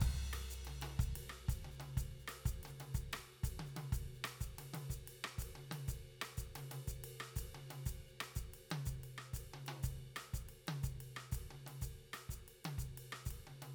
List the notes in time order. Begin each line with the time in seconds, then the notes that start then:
0.01 kick, hi-hat pedal, crash
0.33 cross-stick, ride
0.51 hi-hat pedal
0.65 high tom, ride
0.73 hi-hat pedal
0.82 high tom, ride
1.00 kick, hi-hat pedal
1.16 ride
1.30 cross-stick
1.49 kick, hi-hat pedal, ride
1.65 high tom
1.72 hi-hat pedal
1.80 high tom, ride
1.97 kick, hi-hat pedal, ride
2.20 hi-hat pedal
2.28 cross-stick, ride
2.46 kick, hi-hat pedal
2.64 hi-hat pedal, high tom, ride
2.81 high tom, ride
2.95 kick, hi-hat pedal
3.13 cross-stick, ride
3.44 kick, hi-hat pedal, ride
3.60 high tom
3.66 hi-hat pedal
3.77 high tom, ride
3.93 kick, hi-hat pedal, ride
4.15 hi-hat pedal
4.25 cross-stick, ride
4.41 kick, hi-hat pedal
4.59 high tom, ride
4.74 high tom, ride
4.90 kick, hi-hat pedal
5.08 ride
5.25 cross-stick
5.39 kick, hi-hat pedal, ride
5.56 high tom
5.72 high tom, ride
5.88 kick, hi-hat pedal, ride
6.22 cross-stick, ride
6.38 kick, hi-hat pedal
6.56 high tom, ride
6.72 high tom, ride
6.88 kick, hi-hat pedal
7.04 ride
7.21 cross-stick
7.36 kick, hi-hat pedal, ride
7.55 high tom
7.71 high tom, ride
7.86 kick, hi-hat pedal, ride
8.08 hi-hat pedal
8.21 cross-stick, ride
8.36 kick, hi-hat pedal
8.54 ride
8.71 high tom, ride
8.86 kick, hi-hat pedal
9.04 ride
9.18 cross-stick
9.34 kick, hi-hat pedal, ride
9.54 high tom
9.67 high tom, ride
9.83 kick, hi-hat pedal, ride
10.17 cross-stick, ride
10.34 kick, hi-hat pedal
10.49 ride
10.68 high tom, ride
10.84 kick, hi-hat pedal
11.01 ride
11.17 cross-stick
11.32 kick, hi-hat pedal, ride
11.51 high tom
11.67 high tom, ride
11.82 kick, hi-hat pedal, ride
12.14 cross-stick, ride
12.30 kick, hi-hat pedal
12.48 ride
12.65 high tom, ride
12.78 kick, hi-hat pedal
12.98 ride
13.13 cross-stick
13.26 kick, hi-hat pedal
13.31 ride
13.47 high tom
13.62 high tom, ride